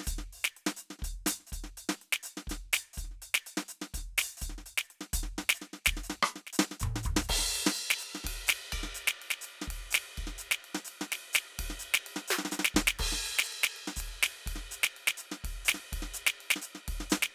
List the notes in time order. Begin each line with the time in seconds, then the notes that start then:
0.01 snare, hi-hat pedal
0.07 closed hi-hat, kick
0.14 kick
0.17 kick, snare
0.33 open hi-hat
0.45 snare, hi-hat pedal
0.57 closed hi-hat
0.67 snare
0.77 closed hi-hat, hi-hat pedal
0.91 snare
1.00 kick, snare
1.05 closed hi-hat, kick
1.27 open hi-hat, snare
1.41 snare
1.47 hi-hat pedal
1.53 closed hi-hat, kick
1.64 snare
1.78 closed hi-hat
1.90 snare
2.02 closed hi-hat
2.13 snare
2.24 closed hi-hat, hi-hat pedal
2.38 snare
2.48 closed hi-hat, kick, snare
2.73 closed hi-hat, snare
2.94 hi-hat pedal
2.98 closed hi-hat, kick
3.05 snare
3.12 snare
3.23 closed hi-hat
3.35 snare
3.47 closed hi-hat
3.58 snare
3.69 hi-hat pedal
3.82 snare
3.95 closed hi-hat, kick, snare
4.18 open hi-hat, snare
4.38 hi-hat pedal
4.42 closed hi-hat, kick
4.50 snare
4.59 snare
4.67 closed hi-hat
4.78 snare
4.83 hi-hat pedal
4.91 closed hi-hat
5.01 snare
5.14 closed hi-hat, kick
5.20 kick, snare
5.24 kick
5.39 snare
5.50 snare
5.55 hi-hat pedal
5.62 snare
5.74 snare
5.85 kick, snare, hi-hat pedal
5.94 kick, snare
6.04 hi-hat pedal
6.10 snare
6.23 cross-stick
6.36 snare
6.47 snare
6.54 hi-hat pedal
6.60 snare
6.72 snare
6.80 kick, hi-hat pedal, mid tom
6.90 kick
6.96 snare
7.04 kick, floor tom, hi-hat pedal
7.13 kick
7.15 kick, snare
7.23 hi-hat pedal
7.30 kick, crash
7.37 kick, snare
7.56 ride
7.67 snare
7.74 hi-hat pedal
7.79 ride
7.91 snare
7.99 hi-hat pedal, ride
8.15 snare
8.25 kick, snare, ride
8.48 snare, hi-hat pedal, ride
8.73 kick, ride bell
8.82 kick, snare
8.95 hi-hat pedal, ride
9.08 snare
9.22 ride
9.31 snare
9.42 hi-hat pedal, ride
9.62 snare
9.68 kick, ride
9.91 snare, hi-hat pedal, ride
10.18 kick, ride bell
10.24 kick, snare
10.39 hi-hat pedal, ride
10.52 snare
10.65 ride
10.75 snare
10.85 hi-hat pedal, ride
11.02 snare
11.13 snare, ride
11.34 snare, hi-hat pedal, ride
11.60 kick, ride
11.65 kick
11.68 kick, snare
11.80 hi-hat pedal
11.84 ride
11.95 snare
12.07 ride
12.17 snare
12.28 snare, hi-hat pedal
12.39 snare
12.46 snare
12.52 snare, hi-hat pedal
12.60 snare
12.65 snare
12.75 kick, snare
12.80 kick
12.88 snare
13.00 kick, crash
13.07 kick
13.13 snare
13.27 ride
13.39 snare
13.44 hi-hat pedal
13.53 ride
13.64 snare
13.77 ride
13.88 snare
13.97 kick, hi-hat pedal
14.01 ride
14.05 kick
14.23 snare, hi-hat pedal, ride
14.47 kick, ride
14.56 snare
14.72 hi-hat pedal, ride
14.84 snare
14.97 ride
15.08 snare
15.18 hi-hat pedal, ride
15.32 snare
15.45 kick, ride
15.66 snare, hi-hat pedal, ride
15.75 snare
15.93 kick, ride
15.99 kick, snare
16.14 hi-hat pedal, ride
16.27 snare
16.41 ride
16.51 snare
16.57 snare
16.62 hi-hat pedal, ride
16.75 snare
16.89 kick, ride
16.95 kick
17.01 snare
17.11 snare, hi-hat pedal
17.23 snare